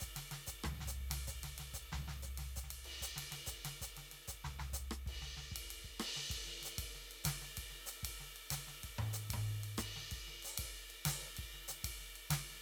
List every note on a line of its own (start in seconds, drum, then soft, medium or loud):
0.01 kick soft
0.01 hi-hat pedal medium
0.17 snare soft
0.17 ride medium
0.32 snare soft
0.32 ride medium
0.47 kick soft
0.47 hi-hat pedal medium
0.64 cross-stick medium
0.64 floor tom medium
0.81 snare soft
0.87 kick soft
0.87 hi-hat pedal medium
1.11 snare soft
1.11 ride loud
1.28 kick soft
1.28 hi-hat pedal medium
1.44 snare soft
1.44 ride medium
1.59 snare soft
1.59 ride medium
1.74 kick soft
1.74 hi-hat pedal medium
1.93 snare soft
1.93 floor tom medium
2.09 snare soft
2.23 kick soft
2.23 hi-hat pedal medium
2.38 snare soft
2.38 ride medium
2.57 kick soft
2.57 hi-hat pedal medium
2.64 snare soft
2.71 ride medium
2.85 ride medium
3.02 kick soft
3.02 hi-hat pedal medium
3.17 snare soft
3.17 ride medium
3.32 snare soft
3.32 ride medium
3.47 kick soft
3.47 hi-hat pedal medium
3.66 snare soft
3.66 ride medium
3.82 kick soft
3.82 hi-hat pedal medium
3.98 snare soft
3.98 ride medium
4.12 snare soft
4.12 ride medium
4.28 kick soft
4.28 hi-hat pedal medium
4.45 snare soft
4.45 floor tom medium
4.60 snare soft
4.60 floor tom medium
4.74 kick soft
4.74 hi-hat pedal medium
4.92 cross-stick medium
5.07 kick soft
5.07 ride medium
5.22 snare soft
5.37 snare soft
5.52 kick soft
5.57 ride medium
5.71 ride medium
5.85 kick soft
6.01 cross-stick medium
6.01 ride loud
6.17 snare soft
6.31 kick soft
6.31 ride medium
6.47 snare soft
6.62 snare soft
6.62 hi-hat pedal medium
6.62 ride medium
6.79 kick soft
6.79 ride loud
6.95 snare soft
7.12 ride medium
7.25 kick soft
7.25 snare medium
7.25 hi-hat pedal medium
7.25 ride loud
7.42 snare soft
7.58 kick soft
7.58 ride medium
7.71 snare soft
7.87 hi-hat pedal medium
7.87 ride medium
8.04 kick soft
8.04 ride loud
8.21 snare soft
8.37 ride medium
8.51 kick soft
8.51 snare medium
8.51 hi-hat pedal medium
8.51 ride loud
8.68 snare soft
8.84 kick soft
8.84 ride medium
8.99 high tom medium
9.14 hi-hat pedal medium
9.14 ride medium
9.31 kick soft
9.31 high tom medium
9.31 ride loud
9.36 closed hi-hat soft
9.64 ride medium
9.78 kick soft
9.78 cross-stick medium
9.78 hi-hat pedal medium
9.78 ride medium
9.97 snare soft
10.12 kick soft
10.12 ride medium
10.28 snare soft
10.43 hi-hat pedal medium
10.43 ride soft
10.59 kick soft
10.59 ride loud
10.91 ride soft
11.06 kick soft
11.06 snare medium
11.06 hi-hat pedal medium
11.06 ride loud
11.23 snare soft
11.37 kick soft
11.37 ride medium
11.54 snare soft
11.69 snare soft
11.69 hi-hat pedal medium
11.69 ride medium
11.85 kick soft
11.85 ride loud
12.01 snare soft
12.16 ride medium
12.31 kick soft
12.31 snare medium
12.31 hi-hat pedal medium
12.31 ride loud
12.51 snare soft